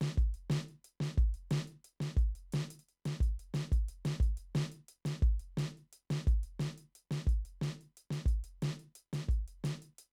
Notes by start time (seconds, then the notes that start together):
0.01 snare, closed hi-hat
0.17 kick, closed hi-hat
0.34 closed hi-hat
0.50 snare, closed hi-hat
0.68 closed hi-hat
0.84 closed hi-hat
1.00 snare, closed hi-hat
1.17 kick, closed hi-hat
1.34 closed hi-hat
1.51 snare, closed hi-hat
1.67 closed hi-hat
1.84 closed hi-hat
2.00 snare, closed hi-hat
2.17 kick, closed hi-hat
2.35 closed hi-hat
2.52 snare, closed hi-hat
2.70 closed hi-hat
2.79 closed hi-hat
2.88 closed hi-hat
3.05 snare, closed hi-hat
3.20 kick, closed hi-hat
3.39 closed hi-hat
3.54 snare, closed hi-hat
3.72 kick, closed hi-hat
3.88 closed hi-hat
4.05 snare, closed hi-hat
4.20 kick, closed hi-hat
4.37 closed hi-hat
4.55 snare, closed hi-hat
4.72 closed hi-hat
4.88 closed hi-hat
5.05 snare, closed hi-hat
5.22 kick, closed hi-hat
5.39 closed hi-hat
5.57 snare, closed hi-hat
5.77 closed hi-hat
5.92 closed hi-hat
6.10 snare, closed hi-hat
6.27 kick, closed hi-hat
6.43 closed hi-hat
6.59 snare, closed hi-hat
6.78 closed hi-hat
6.95 closed hi-hat
7.11 snare, closed hi-hat
7.27 kick, closed hi-hat
7.45 closed hi-hat
7.61 snare, closed hi-hat
7.81 closed hi-hat
7.97 closed hi-hat
8.10 snare, closed hi-hat
8.26 kick, closed hi-hat
8.44 closed hi-hat
8.62 snare, closed hi-hat
8.79 closed hi-hat
8.95 closed hi-hat
9.13 snare, closed hi-hat
9.28 kick, closed hi-hat
9.48 closed hi-hat
9.64 snare, closed hi-hat
9.82 closed hi-hat
9.98 closed hi-hat